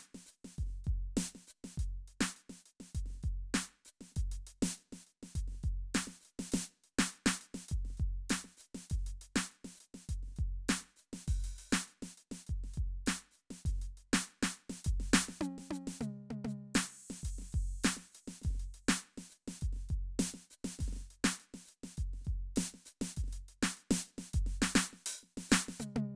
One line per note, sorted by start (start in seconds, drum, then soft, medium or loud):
0.01 closed hi-hat soft
0.15 snare soft
0.26 hi-hat pedal medium
0.31 closed hi-hat soft
0.45 snare soft
0.59 kick soft
0.59 closed hi-hat soft
0.63 snare soft
0.67 snare soft
0.70 snare soft
0.85 kick soft
0.85 closed hi-hat soft
0.97 kick soft
1.18 closed hi-hat medium
1.18 snare medium
1.36 snare soft
1.48 hi-hat pedal medium
1.65 snare soft
1.78 closed hi-hat medium
1.78 kick soft
1.78 snare soft
2.08 closed hi-hat soft
2.21 snare medium
2.37 closed hi-hat soft
2.50 snare soft
2.59 hi-hat pedal soft
2.66 closed hi-hat soft
2.81 snare soft
2.96 closed hi-hat medium
2.96 kick soft
3.07 snare soft
3.11 snare soft
3.15 snare soft
3.18 snare soft
3.24 kick soft
3.24 closed hi-hat soft
3.55 open hi-hat medium
3.55 snare medium
3.86 hi-hat pedal medium
3.86 open hi-hat soft
4.01 snare soft
4.12 snare soft
4.17 closed hi-hat medium
4.17 kick soft
4.32 closed hi-hat medium
4.48 closed hi-hat medium
4.63 snare medium
4.78 closed hi-hat soft
4.93 snare soft
5.00 hi-hat pedal soft
5.07 closed hi-hat soft
5.24 snare soft
5.36 closed hi-hat medium
5.36 kick soft
5.48 snare soft
5.53 snare soft
5.55 snare soft
5.64 kick soft
5.64 closed hi-hat soft
5.74 kick soft
5.95 closed hi-hat medium
5.95 snare medium
6.08 snare soft
6.21 hi-hat pedal medium
6.26 closed hi-hat soft
6.40 snare medium
6.53 closed hi-hat medium
6.53 snare medium
6.85 closed hi-hat soft
6.99 snare loud
7.13 closed hi-hat soft
7.27 snare loud
7.42 closed hi-hat medium
7.55 snare soft
7.69 closed hi-hat medium
7.69 kick soft
7.86 snare soft
7.91 snare soft
7.98 kick soft
7.98 closed hi-hat soft
8.10 kick soft
8.30 closed hi-hat loud
8.30 snare medium
8.45 snare soft
8.58 closed hi-hat soft
8.58 hi-hat pedal medium
8.75 snare soft
8.91 closed hi-hat medium
8.91 kick soft
8.91 snare soft
8.96 snare soft
9.07 closed hi-hat medium
9.22 closed hi-hat medium
9.37 snare medium
9.52 closed hi-hat soft
9.65 snare soft
9.75 hi-hat pedal medium
9.81 closed hi-hat soft
9.95 snare soft
10.10 closed hi-hat medium
10.10 kick soft
10.24 snare soft
10.28 snare soft
10.32 snare soft
10.37 kick soft
10.37 closed hi-hat soft
10.48 kick soft
10.69 closed hi-hat medium
10.69 snare medium
10.82 snare soft
10.97 closed hi-hat soft
10.97 hi-hat pedal medium
11.14 snare soft
11.28 open hi-hat medium
11.28 kick medium
11.28 snare soft
11.38 kick soft
11.45 open hi-hat soft
11.59 open hi-hat medium
11.73 snare loud
11.88 closed hi-hat soft
12.03 snare soft
12.17 closed hi-hat soft
12.17 hi-hat pedal soft
12.32 snare soft
12.47 closed hi-hat soft
12.47 kick soft
12.64 snare soft
12.74 closed hi-hat soft
12.74 kick soft
12.84 kick soft
12.87 kick soft
13.07 closed hi-hat medium
13.07 snare medium
13.32 hi-hat pedal soft
13.36 closed hi-hat soft
13.51 snare soft
13.66 closed hi-hat medium
13.66 kick soft
13.66 snare soft
13.72 kick soft
13.72 snare soft
13.75 kick soft
13.75 snare soft
13.79 closed hi-hat soft
13.79 snare soft
13.98 closed hi-hat soft
14.14 snare loud
14.28 closed hi-hat soft
14.43 snare medium
14.52 hi-hat pedal soft
14.58 closed hi-hat soft
14.70 snare soft
14.85 closed hi-hat medium
14.85 kick medium
14.94 kick soft
14.97 kick soft
14.97 snare soft
15.14 snare loud
15.29 snare soft
15.42 hi-hat pedal medium
15.42 high tom loud
15.59 snare soft
15.71 hi-hat pedal medium
15.71 high tom medium
15.88 snare soft
16.01 hi-hat pedal medium
16.01 mid tom loud
16.31 mid tom medium
16.45 hi-hat pedal medium
16.45 mid tom medium
16.75 snare loud
16.75 crash loud
17.11 snare soft
17.24 closed hi-hat medium
17.24 kick soft
17.39 snare soft
17.42 snare soft
17.53 kick soft
17.53 closed hi-hat soft
17.64 kick soft
17.85 closed hi-hat loud
17.85 snare loud
17.97 snare soft
18.12 closed hi-hat medium
18.12 hi-hat pedal soft
18.28 snare soft
18.42 kick soft
18.42 snare soft
18.42 closed hi-hat medium
18.48 snare soft
18.51 kick soft
18.51 snare soft
18.56 snare soft
18.60 closed hi-hat soft
18.75 closed hi-hat medium
18.89 snare loud
19.04 closed hi-hat soft
19.18 snare soft
19.30 closed hi-hat soft
19.30 hi-hat pedal medium
19.48 snare soft
19.62 closed hi-hat soft
19.62 kick soft
19.73 snare soft
19.77 snare soft
19.90 kick soft
19.90 closed hi-hat soft
19.99 kick soft
20.20 closed hi-hat medium
20.20 snare medium
20.35 snare soft
20.51 hi-hat pedal medium
20.65 snare medium
20.80 closed hi-hat medium
20.80 kick soft
20.80 snare soft
20.88 kick soft
20.88 snare soft
20.93 open hi-hat soft
20.93 snare soft
20.97 snare soft
21.01 snare soft
21.11 closed hi-hat soft
21.25 snare loud
21.41 closed hi-hat soft
21.55 snare soft
21.65 closed hi-hat soft
21.65 hi-hat pedal medium
21.84 snare soft
21.98 closed hi-hat soft
21.98 kick soft
22.14 snare soft
22.22 snare soft
22.22 closed hi-hat soft
22.22 hi-hat pedal soft
22.28 kick soft
22.34 kick soft
22.36 kick soft
22.57 closed hi-hat medium
22.57 snare medium
22.75 snare soft
22.86 closed hi-hat soft
22.86 hi-hat pedal medium
23.02 snare medium
23.17 closed hi-hat medium
23.17 kick soft
23.25 snare soft
23.29 snare soft
23.33 closed hi-hat medium
23.49 closed hi-hat soft
23.63 snare medium
23.78 closed hi-hat soft
23.91 snare loud
24.00 hi-hat pedal soft
24.06 closed hi-hat soft
24.19 snare soft
24.28 hi-hat pedal soft
24.34 closed hi-hat medium
24.34 kick medium
24.42 kick soft
24.45 kick soft
24.45 snare soft
24.63 snare medium
24.76 snare loud
24.88 hi-hat pedal soft
24.94 snare soft
25.07 open hi-hat loud
25.15 hi-hat pedal soft
25.24 snare soft
25.38 snare soft
25.49 snare loud
25.49 hi-hat pedal medium
25.69 snare soft
25.80 hi-hat pedal loud
25.80 mid tom medium
25.97 mid tom loud